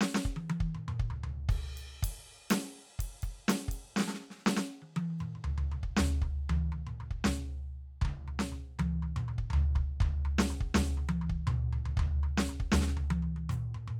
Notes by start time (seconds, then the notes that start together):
0.02 snare
0.14 snare
0.25 kick
0.36 high tom
0.50 high tom
0.60 kick
0.75 mid tom
0.88 mid tom
0.99 kick
1.10 floor tom
1.23 floor tom
1.49 kick, ride
1.77 ride
2.02 kick, ride
2.50 snare, ride
2.99 kick, ride
3.22 kick, ride
3.48 snare, ride
3.68 kick, ride
3.93 kick, snare, hi-hat pedal
4.00 snare
4.08 snare
4.14 snare
4.20 snare
4.30 snare
4.34 snare
4.38 snare
4.45 snare, hi-hat pedal
4.56 snare
4.82 high tom
4.96 high tom
5.10 high tom
5.18 hi-hat pedal, mid tom
5.35 mid tom
5.44 floor tom
5.58 floor tom
5.71 floor tom
5.83 kick
5.97 snare, floor tom
6.22 kick, floor tom
6.49 floor tom, high tom
6.72 floor tom
6.87 mid tom
7.00 floor tom
7.11 kick
7.24 snare, floor tom
8.01 kick, floor tom
8.05 floor tom
8.28 floor tom
8.39 snare
8.52 floor tom
8.79 floor tom, high tom
9.02 floor tom
9.16 mid tom
9.28 floor tom
9.38 kick
9.50 floor tom
9.53 floor tom
9.75 kick, floor tom
10.00 kick, floor tom
10.25 floor tom
10.38 snare
10.50 floor tom
10.61 kick
10.74 snare, floor tom
10.97 floor tom
11.09 high tom
11.21 floor tom
11.29 kick
11.47 floor tom, mid tom
11.72 floor tom
11.86 floor tom
11.97 kick, floor tom
12.23 floor tom
12.38 snare
12.49 floor tom
12.60 kick
12.72 snare, floor tom
12.81 snare
12.87 snare
12.97 floor tom
13.10 high tom
13.22 floor tom
13.36 high tom
13.49 hi-hat pedal, mid tom
13.74 mid tom
13.88 mid tom